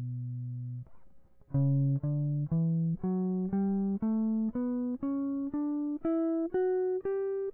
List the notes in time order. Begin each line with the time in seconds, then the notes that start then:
1.56 C#3
2.06 D3
2.53 E3
3.05 F#3
3.54 G3
4.03 A3
4.56 B3
5.04 C#4
5.55 D4
6.06 E4
6.55 F#4
7.06 G4